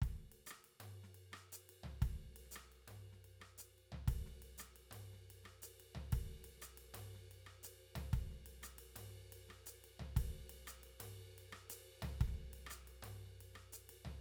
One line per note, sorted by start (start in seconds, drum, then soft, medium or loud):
0.01 kick medium
0.01 ride soft
0.32 ride soft
0.46 cross-stick soft
0.46 hi-hat pedal medium
0.50 cross-stick soft
0.64 ride soft
0.80 mid tom medium
0.80 ride soft
1.03 snare soft
1.14 ride soft
1.32 cross-stick soft
1.32 snare soft
1.52 hi-hat pedal medium
1.52 ride soft
1.69 ride soft
1.83 floor tom medium
2.01 kick medium
2.01 ride soft
2.18 snare soft
2.36 ride soft
2.46 cross-stick soft
2.51 snare soft
2.51 hi-hat pedal medium
2.72 ride soft
2.87 mid tom medium
2.87 ride soft
3.12 snare soft
3.24 ride soft
3.40 cross-stick soft
3.40 snare soft
3.58 hi-hat pedal medium
3.58 ride soft
3.78 ride soft
3.92 floor tom medium
4.07 kick medium
4.07 ride medium
4.26 snare soft
4.42 ride soft
4.58 cross-stick soft
4.58 snare soft
4.58 hi-hat pedal medium
4.76 ride soft
4.91 mid tom medium
4.91 ride medium
5.13 snare soft
5.30 ride soft
5.44 cross-stick soft
5.44 snare soft
5.62 hi-hat pedal medium
5.62 ride medium
5.80 ride soft
5.95 floor tom medium
6.12 kick medium
6.12 ride medium
6.44 ride soft
6.60 cross-stick soft
6.60 snare soft
6.60 hi-hat pedal medium
6.77 ride soft
6.94 mid tom medium
6.94 ride medium
7.14 snare soft
7.31 ride soft
7.45 cross-stick soft
7.45 snare soft
7.63 hi-hat pedal medium
7.63 ride medium
7.95 floor tom medium
7.95 ride soft
8.13 kick medium
8.13 ride soft
8.31 snare soft
8.46 ride soft
8.62 cross-stick soft
8.62 snare soft
8.62 hi-hat pedal medium
8.78 ride medium
8.96 mid tom medium
8.96 ride medium
9.09 snare soft
9.32 ride soft
9.48 cross-stick soft
9.48 snare soft
9.66 hi-hat pedal medium
9.66 ride medium
9.84 ride soft
9.99 floor tom medium
10.16 kick medium
10.16 ride medium
10.32 snare soft
10.49 ride medium
10.66 cross-stick soft
10.66 snare soft
10.66 hi-hat pedal medium
10.83 ride soft
11.00 mid tom medium
11.00 ride medium
11.18 snare soft
11.38 ride soft
11.51 cross-stick soft
11.51 snare soft
11.69 hi-hat pedal medium
11.69 ride medium
12.02 floor tom medium
12.02 ride soft
12.20 kick medium
12.20 ride soft
12.27 snare soft
12.53 ride soft
12.66 cross-stick soft
12.66 hi-hat pedal medium
12.70 cross-stick soft
12.87 ride soft
13.02 mid tom medium
13.02 ride medium
13.25 snare soft
13.40 ride soft
13.54 cross-stick soft
13.54 snare soft
13.72 hi-hat pedal medium
13.72 ride soft
13.89 ride medium
14.05 floor tom medium